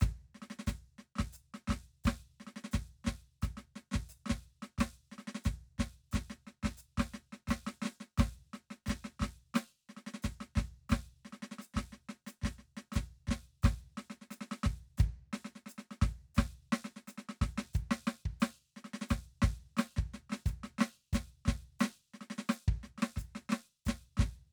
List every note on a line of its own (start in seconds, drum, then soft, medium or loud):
0.01 kick medium
0.01 snare medium
0.01 hi-hat pedal medium
0.35 snare soft
0.42 snare soft
0.51 snare soft
0.60 snare soft
0.67 kick medium
0.67 snare medium
0.67 hi-hat pedal medium
0.99 snare soft
1.16 snare soft
1.19 kick medium
1.19 snare medium
1.33 hi-hat pedal medium
1.55 snare soft
1.68 kick medium
1.68 snare medium
1.71 snare medium
2.05 kick medium
2.05 snare soft
2.05 hi-hat pedal medium
2.08 snare medium
2.41 snare soft
2.47 snare soft
2.57 snare soft
2.65 snare soft
2.72 kick medium
2.72 snare medium
2.72 hi-hat pedal medium
3.05 snare soft
3.07 kick soft
3.07 snare medium
3.42 kick medium
3.42 snare soft
3.42 hi-hat pedal medium
3.58 snare soft
3.76 snare soft
3.92 snare soft
3.94 kick medium
3.94 snare medium
4.10 hi-hat pedal medium
4.26 snare soft
4.30 kick soft
4.30 snare medium
4.63 snare soft
4.79 kick soft
4.79 snare soft
4.79 hi-hat pedal medium
4.81 snare medium
5.12 snare soft
5.19 snare soft
5.28 snare soft
5.35 snare medium
5.45 kick medium
5.45 snare medium
5.45 hi-hat pedal medium
5.79 kick medium
5.79 snare soft
5.80 snare medium
6.12 kick medium
6.12 snare soft
6.12 hi-hat pedal medium
6.16 snare medium
6.31 snare soft
6.47 snare soft
6.63 kick soft
6.63 snare soft
6.65 snare medium
6.78 hi-hat pedal medium
6.98 kick medium
6.98 snare medium
7.00 snare medium
7.14 snare soft
7.33 snare soft
7.48 kick soft
7.48 snare soft
7.48 hi-hat pedal medium
7.51 snare medium
7.67 snare medium
7.82 snare medium
7.86 snare medium
8.01 snare soft
8.18 kick medium
8.18 snare soft
8.18 hi-hat pedal medium
8.20 snare medium
8.54 snare soft
8.71 snare soft
8.87 kick soft
8.87 snare soft
8.87 hi-hat pedal medium
8.90 snare medium
9.05 snare soft
9.20 kick medium
9.20 snare soft
9.23 snare medium
9.55 snare soft
9.55 snare loud
9.55 hi-hat pedal medium
9.90 snare soft
9.97 snare soft
10.07 snare soft
10.14 snare soft
10.23 kick soft
10.23 hi-hat pedal medium
10.41 snare soft
10.56 kick medium
10.56 snare soft
10.58 snare medium
10.90 kick medium
10.90 snare soft
10.90 hi-hat pedal medium
10.93 snare medium
11.26 snare soft
11.33 snare soft
11.43 snare soft
11.52 snare soft
11.59 snare soft
11.59 hi-hat pedal medium
11.75 kick soft
11.75 snare soft
11.77 snare medium
11.93 snare soft
12.09 snare soft
12.27 snare soft
12.27 hi-hat pedal medium
12.42 kick medium
12.42 snare soft
12.46 snare medium
12.59 snare soft
12.77 snare soft
12.93 snare soft
12.93 hi-hat pedal medium
12.96 kick medium
12.96 snare medium
13.28 kick medium
13.28 snare soft
13.31 snare medium
13.63 kick loud
13.63 snare soft
13.63 hi-hat pedal medium
13.66 snare medium
13.98 snare soft
14.11 snare soft
14.22 snare soft
14.31 snare soft
14.31 hi-hat pedal medium
14.41 snare soft
14.52 snare medium
14.64 kick medium
14.64 snare medium
14.98 kick loud
14.98 snare soft
14.98 hi-hat pedal medium
15.34 snare medium
15.45 snare soft
15.56 snare soft
15.67 snare soft
15.67 hi-hat pedal medium
15.79 snare soft
15.91 snare soft
16.02 kick medium
16.02 snare medium
16.35 kick medium
16.35 snare soft
16.35 snare medium
16.35 hi-hat pedal medium
16.73 snare medium
16.85 snare soft
16.97 snare soft
17.08 snare soft
17.08 hi-hat pedal medium
17.18 snare soft
17.29 snare soft
17.42 kick medium
17.42 snare medium
17.58 snare medium
17.74 kick medium
17.74 hi-hat pedal medium
17.92 snare medium
18.08 snare medium
18.26 kick medium
18.41 snare loud
18.41 hi-hat pedal medium
18.77 snare soft
18.85 snare soft
18.94 snare medium
19.02 snare medium
19.10 kick medium
19.10 snare medium
19.10 hi-hat pedal medium
19.43 kick medium
19.43 snare medium
19.77 snare soft
19.77 hi-hat pedal medium
19.79 snare loud
19.97 kick medium
19.97 snare soft
20.14 snare soft
20.30 snare soft
20.33 snare medium
20.46 kick medium
20.46 snare soft
20.46 hi-hat pedal medium
20.64 snare soft
20.79 snare medium
20.81 snare loud
21.13 kick medium
21.13 snare soft
21.13 snare medium
21.13 hi-hat pedal medium
21.46 kick medium
21.46 snare soft
21.49 snare medium
21.80 snare loud
21.80 hi-hat pedal medium
21.84 snare medium
22.14 snare soft
22.21 snare soft
22.31 snare soft
22.39 snare medium
22.50 snare medium
22.50 hi-hat pedal medium
22.68 kick medium
22.84 snare soft
22.98 snare soft
23.03 snare medium
23.17 kick soft
23.17 snare soft
23.17 hi-hat pedal medium
23.36 snare soft
23.50 snare medium
23.53 snare medium
23.86 kick medium
23.86 snare soft
23.86 snare medium
23.86 hi-hat pedal medium
24.18 kick medium
24.18 snare soft
24.21 snare medium